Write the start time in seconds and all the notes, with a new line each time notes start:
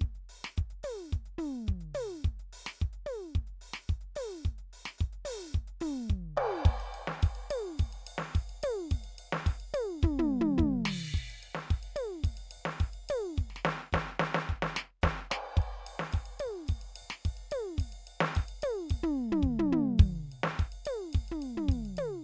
0.01 kick, closed hi-hat, hi-hat pedal
0.16 closed hi-hat
0.30 open hi-hat
0.45 snare
0.56 kick, closed hi-hat, hi-hat pedal
0.71 closed hi-hat
0.84 open hi-hat, high tom
1.12 kick, closed hi-hat, hi-hat pedal
1.27 closed hi-hat
1.39 floor tom, open hi-hat
1.68 kick, hi-hat pedal, open hi-hat
1.81 closed hi-hat
1.95 open hi-hat, high tom
2.23 kick, closed hi-hat, hi-hat pedal
2.40 closed hi-hat
2.54 open hi-hat
2.67 snare
2.80 kick, closed hi-hat, hi-hat pedal
2.94 closed hi-hat
3.07 open hi-hat, high tom
3.34 kick, closed hi-hat, hi-hat pedal
3.48 closed hi-hat
3.62 open hi-hat
3.75 snare
3.89 kick, hi-hat pedal, open hi-hat
4.02 closed hi-hat
4.17 open hi-hat, high tom
4.46 kick, closed hi-hat, hi-hat pedal
4.59 closed hi-hat
4.74 open hi-hat
4.86 snare
4.99 kick, hi-hat pedal, open hi-hat
5.14 closed hi-hat
5.26 open hi-hat, high tom
5.53 kick, closed hi-hat, hi-hat pedal
5.68 closed hi-hat
5.81 floor tom, open hi-hat
6.09 kick, closed hi-hat, hi-hat pedal
6.38 high tom, crash
6.66 kick, hi-hat pedal, ride
6.81 ride
6.95 ride
7.08 snare
7.22 kick, hi-hat pedal, ride
7.36 ride
7.51 high tom, ride
7.78 kick, hi-hat pedal, ride
7.94 ride
8.08 ride
8.19 snare
8.33 kick, hi-hat pedal, ride
8.50 ride
8.64 kick, high tom, ride
8.91 kick, hi-hat pedal, ride
9.05 ride
9.19 ride
9.34 snare
9.44 kick, hi-hat pedal, ride
9.61 ride
9.74 high tom, ride
10.02 kick, floor tom, hi-hat pedal
10.19 floor tom
10.32 kick
10.41 floor tom
10.58 kick, floor tom, hi-hat pedal
10.86 snare, crash
11.14 kick, hi-hat pedal
11.18 ride
11.31 ride
11.44 ride
11.48 kick
11.56 snare
11.69 kick, hi-hat pedal, ride
11.84 ride
11.97 high tom, ride
12.23 kick, hi-hat pedal, ride
12.38 ride
12.52 ride
12.58 kick
12.66 snare
12.79 kick, hi-hat pedal, ride
12.94 ride
13.10 kick, high tom, ride
13.36 kick, hi-hat pedal
13.51 snare
13.57 snare
13.66 snare
13.93 kick, snare, hi-hat pedal
14.20 snare
14.36 snare
14.49 kick, hi-hat pedal
14.63 snare
14.77 snare
15.03 kick, snare, hi-hat pedal
15.31 kick, snare, crash
15.56 kick, hi-hat pedal
15.63 ride
15.88 ride
16.00 snare
16.12 kick, hi-hat pedal, ride
16.27 ride
16.41 high tom, ride
16.47 kick
16.67 kick, hi-hat pedal, ride
16.82 ride
16.97 ride
17.02 kick
17.11 snare
17.22 hi-hat pedal
17.26 kick, ride
17.38 ride
17.52 kick, high tom, ride
17.77 kick, hi-hat pedal, ride
17.93 ride
18.08 ride
18.22 snare
18.34 kick, hi-hat pedal, ride
18.49 ride
18.63 kick, high tom, ride
18.89 kick, hi-hat pedal, ride
19.04 floor tom
19.32 floor tom
19.42 kick, hi-hat pedal
19.59 floor tom
19.73 floor tom
19.99 kick, hi-hat pedal, ride
20.33 ride
20.44 snare
20.59 kick, hi-hat pedal, ride
20.73 ride
20.86 high tom, ride
21.14 kick, hi-hat pedal, ride
21.29 floor tom, ride
21.43 ride
21.58 floor tom
21.70 kick, hi-hat pedal, ride
21.86 ride
21.98 high tom, ride